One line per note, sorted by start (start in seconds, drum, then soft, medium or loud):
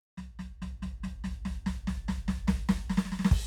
0.18 snare soft
0.18 floor tom medium
0.39 snare medium
0.39 floor tom medium
0.62 snare medium
0.62 floor tom medium
0.83 snare medium
0.83 floor tom medium
1.04 snare medium
1.04 floor tom medium
1.24 snare medium
1.24 floor tom medium
1.46 snare medium
1.46 floor tom medium
1.67 snare loud
1.67 floor tom medium
1.88 snare loud
1.88 floor tom medium
2.09 snare loud
2.09 floor tom loud
2.28 snare loud
2.28 floor tom loud
2.48 snare loud
2.48 floor tom loud
2.69 snare loud
2.69 floor tom loud
2.90 snare loud
2.98 snare loud
3.06 snare medium
3.12 snare medium
3.19 snare medium
3.25 snare loud
3.32 kick loud
3.32 crash loud